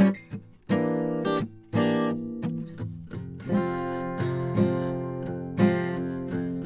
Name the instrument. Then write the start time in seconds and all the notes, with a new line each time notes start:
acoustic guitar
0.00 G3 C#4 F4
0.71 E3 A#3 D4 G4
1.26 A#3 D4 G4
1.74 E3 A#3 D4 G4
2.44 E3 A#3
2.79 E2
3.12 F2 C3
3.41 F2
3.46 C3 F3
3.55 C4 F4
4.19 F2 C3 F3
4.56 C3 F3 C4
5.27 F2 C3
5.59 C3 F3 C4
5.64 F4
5.93 F4
5.97 F2
6.33 F2 C3